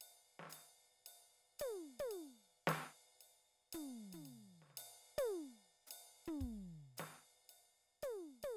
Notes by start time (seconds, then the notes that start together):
0.01 ride
0.40 snare
0.43 snare
0.46 snare
0.50 hi-hat pedal, ride
1.07 ride
1.59 hi-hat pedal, high tom, ride
2.00 high tom, ride
2.11 ride
2.67 snare, hi-hat pedal, ride
3.21 ride
3.73 floor tom, hi-hat pedal, ride
4.13 floor tom, ride
4.26 ride
4.62 snare
4.68 snare
4.71 snare
4.78 hi-hat pedal, ride
5.18 high tom, ride
5.87 hi-hat pedal
5.91 ride
6.26 floor tom, ride
6.41 kick, ride
6.98 snare, hi-hat pedal, ride
7.50 ride
8.03 hi-hat pedal, high tom, ride
8.43 high tom, ride